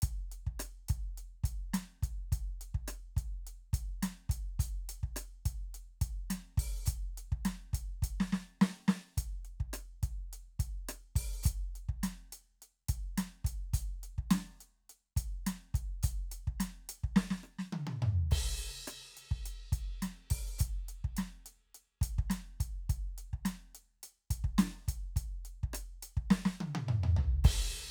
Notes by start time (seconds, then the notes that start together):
0.03 kick, closed hi-hat
0.32 closed hi-hat
0.47 kick
0.60 cross-stick, closed hi-hat
0.89 kick, closed hi-hat
1.18 closed hi-hat
1.44 kick, closed hi-hat
1.74 snare, closed hi-hat
2.03 kick, closed hi-hat
2.32 kick, closed hi-hat
2.61 closed hi-hat
2.75 kick
2.88 cross-stick, closed hi-hat
3.17 kick, closed hi-hat
3.47 closed hi-hat
3.73 kick, closed hi-hat
4.03 snare, closed hi-hat
4.29 kick, closed hi-hat
4.59 closed hi-hat, kick
4.89 closed hi-hat
5.03 kick
5.16 cross-stick, closed hi-hat
5.46 kick, closed hi-hat
5.52 kick
5.74 closed hi-hat
6.01 kick, closed hi-hat
6.30 snare, closed hi-hat
6.58 kick, open hi-hat
6.86 kick, closed hi-hat, hi-hat pedal
7.18 closed hi-hat
7.32 kick
7.45 snare, closed hi-hat
7.73 kick, closed hi-hat
8.02 kick, closed hi-hat
8.20 snare
8.33 snare
8.61 snare
8.88 snare
9.18 kick, closed hi-hat
9.45 closed hi-hat
9.60 kick
9.73 cross-stick, closed hi-hat
10.03 kick, closed hi-hat
10.33 closed hi-hat
10.60 kick, closed hi-hat
10.89 cross-stick, closed hi-hat
11.16 kick, open hi-hat
11.43 kick, closed hi-hat, hi-hat pedal
11.75 closed hi-hat
11.89 kick
11.96 kick
12.03 snare, closed hi-hat
12.33 closed hi-hat
12.62 closed hi-hat
12.89 kick, closed hi-hat
13.18 snare, closed hi-hat
13.45 kick, closed hi-hat
13.74 closed hi-hat, kick
14.03 closed hi-hat
14.18 kick
14.31 snare, closed hi-hat
14.61 closed hi-hat
14.90 closed hi-hat
15.17 kick, closed hi-hat
15.47 snare, closed hi-hat
15.74 kick, closed hi-hat
16.03 closed hi-hat, kick
16.32 closed hi-hat
16.47 kick
16.60 snare, closed hi-hat
16.89 closed hi-hat
17.04 kick
17.16 snare
17.31 snare
17.43 cross-stick
17.59 snare
17.73 high tom
17.87 high tom
18.02 mid tom
18.31 kick, crash
18.59 closed hi-hat
18.88 cross-stick, closed hi-hat
19.17 closed hi-hat
19.31 kick
19.46 closed hi-hat
19.72 kick, closed hi-hat
20.02 snare, closed hi-hat
20.30 kick, open hi-hat
20.59 kick, closed hi-hat, hi-hat pedal
20.89 closed hi-hat
21.04 kick
21.17 snare, closed hi-hat
21.46 closed hi-hat
21.75 closed hi-hat
22.01 kick, closed hi-hat
22.18 kick
22.30 snare, closed hi-hat
22.60 kick, closed hi-hat
22.90 kick, closed hi-hat
23.18 closed hi-hat
23.33 kick
23.45 snare, closed hi-hat
23.75 closed hi-hat
24.03 closed hi-hat
24.30 kick, closed hi-hat
24.44 kick
24.58 snare, closed hi-hat
24.88 kick, closed hi-hat
25.16 kick, closed hi-hat
25.45 closed hi-hat
25.63 kick
25.73 cross-stick, closed hi-hat
26.03 closed hi-hat
26.17 kick
26.31 snare
26.45 snare
26.61 high tom
26.75 high tom
26.89 mid tom
27.04 mid tom
27.17 floor tom
27.44 kick, crash, ride